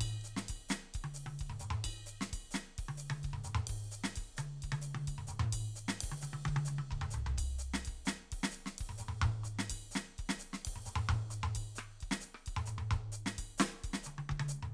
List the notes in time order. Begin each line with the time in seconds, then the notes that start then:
0.01 kick, ride bell
0.07 kick
0.22 hi-hat pedal, ride
0.37 snare
0.49 kick, ride bell
0.69 snare, hi-hat pedal
0.94 kick, ride bell
1.04 high tom
1.14 hi-hat pedal, ride
1.26 high tom
1.39 kick, ride bell
1.46 kick, mid tom
1.60 hi-hat pedal, mid tom
1.71 mid tom
1.77 mid tom
1.84 kick, ride bell
1.90 kick
2.06 hi-hat pedal, ride
2.21 snare
2.33 kick, ride bell
2.40 kick
2.51 snare, hi-hat pedal
2.78 kick, ride
2.89 high tom
2.97 hi-hat pedal, ride
3.10 high tom
3.23 kick, ride bell
3.30 kick, mid tom
3.44 hi-hat pedal, mid tom
3.55 mid tom
3.63 mid tom, ride
3.69 kick
3.88 hi-hat pedal, ride
4.04 snare
4.16 kick, ride bell
4.23 kick
4.37 hi-hat pedal, high tom
4.62 kick, ride bell
4.69 kick, high tom
4.82 hi-hat pedal, ride
4.95 high tom
5.08 kick, ride bell
5.18 mid tom
5.27 hi-hat pedal, mid tom
5.40 mid tom
5.53 kick, ride bell
5.59 kick
5.76 hi-hat pedal, ride
5.88 snare
6.01 kick, ride
6.09 kick, high tom
6.21 hi-hat pedal, high tom
6.33 high tom
6.45 kick, high tom
6.56 high tom
6.65 hi-hat pedal, high tom
6.79 high tom
6.91 kick, mid tom
6.98 kick, mid tom
7.11 floor tom, hi-hat pedal
7.26 floor tom
7.38 kick, ride bell
7.45 kick
7.59 hi-hat pedal, ride
7.74 snare
7.85 kick, ride bell
8.05 snare, hi-hat pedal
8.32 kick, ride
8.43 snare
8.51 hi-hat pedal
8.55 ride
8.66 snare
8.78 kick, ride
8.87 kick, mid tom
8.98 hi-hat pedal, mid tom
9.09 mid tom
9.22 kick, mid tom
9.44 hi-hat pedal, mid tom
9.59 snare
9.70 kick, ride bell
9.77 kick
9.91 hi-hat pedal
9.95 snare
10.18 kick, ride bell
10.29 snare
10.39 hi-hat pedal, ride
10.53 snare
10.65 kick, ride
10.73 kick, mid tom
10.85 hi-hat pedal, mid tom
10.96 mid tom
11.09 kick, mid tom
11.30 hi-hat pedal, mid tom
11.43 mid tom
11.55 kick, ride bell
11.62 kick
11.76 cross-stick, hi-hat pedal
12.01 kick, ride bell
12.11 snare
12.21 hi-hat pedal, ride
12.35 cross-stick
12.46 kick, ride bell
12.57 mid tom
12.66 hi-hat pedal, mid tom
12.78 mid tom
12.91 kick, mid tom
12.97 kick, mid tom
13.12 hi-hat pedal
13.26 snare
13.38 kick, ride bell
13.58 snare, hi-hat pedal
13.79 hi-hat pedal
13.84 kick, ride bell
13.93 snare
14.03 hi-hat pedal, high tom
14.18 high tom
14.29 kick, high tom
14.37 kick, high tom
14.49 hi-hat pedal
14.63 mid tom